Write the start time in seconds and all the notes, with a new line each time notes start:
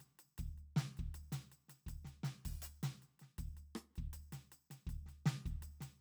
0.01 percussion
0.20 percussion
0.39 kick, percussion
0.58 percussion
0.77 snare, percussion
0.98 kick, percussion
1.15 percussion
1.33 snare, percussion
1.52 percussion
1.69 snare, percussion
1.87 kick, percussion
2.05 snare, percussion
2.24 snare, percussion
2.46 kick, percussion
2.63 percussion
2.66 percussion
2.84 snare, percussion
3.03 percussion
3.20 snare, percussion
3.39 kick, percussion
3.58 percussion
3.76 cross-stick, percussion
3.96 kick, percussion
4.14 percussion
4.33 snare, percussion
4.53 percussion
4.71 snare, percussion
4.87 kick, percussion
5.07 snare, percussion
5.26 snare, percussion
5.46 kick, percussion
5.63 percussion
5.81 snare, percussion